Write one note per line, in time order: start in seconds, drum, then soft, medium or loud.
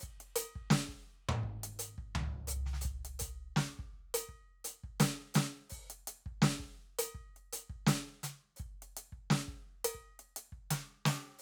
0.01 kick soft
0.01 hi-hat pedal medium
0.21 closed hi-hat soft
0.37 closed hi-hat loud
0.56 kick soft
0.71 snare loud
0.89 kick soft
1.30 high tom loud
1.44 kick soft
1.64 closed hi-hat medium
1.80 closed hi-hat loud
1.99 kick medium
2.16 floor tom loud
2.35 kick soft
2.48 hi-hat pedal loud
2.67 snare soft
2.74 snare soft
2.82 closed hi-hat medium
2.82 kick medium
3.06 closed hi-hat medium
3.20 closed hi-hat loud
3.20 kick medium
3.57 snare loud
3.80 kick medium
4.15 closed hi-hat loud
4.30 kick soft
4.65 closed hi-hat loud
4.85 kick soft
5.01 open hi-hat loud
5.01 snare loud
5.35 open hi-hat loud
5.35 snare loud
5.71 kick soft
5.71 hi-hat pedal medium
5.91 closed hi-hat medium
6.08 closed hi-hat medium
6.27 kick medium
6.43 snare loud
6.60 kick soft
7.00 closed hi-hat loud
7.15 kick soft
7.37 closed hi-hat soft
7.54 closed hi-hat loud
7.71 kick soft
7.87 open hi-hat medium
7.87 snare loud
7.93 snare soft
8.24 open hi-hat medium
8.24 snare medium
8.57 kick medium
8.57 hi-hat pedal soft
8.83 closed hi-hat soft
8.98 closed hi-hat medium
9.13 kick soft
9.31 snare loud
9.49 kick soft
9.85 closed hi-hat loud
9.96 kick soft
10.20 closed hi-hat soft
10.37 closed hi-hat medium
10.53 kick soft
10.71 snare medium
10.71 open hi-hat loud
11.06 snare medium
11.06 open hi-hat medium
11.40 hi-hat pedal medium